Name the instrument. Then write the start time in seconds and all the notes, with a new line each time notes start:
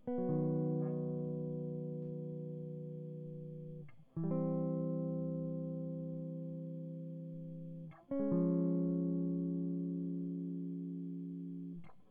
electric guitar
0.07 B3
0.19 F#3
0.30 D#3
4.17 E3
4.24 G3
4.31 C4
8.11 C#4
8.20 G#3
8.32 F3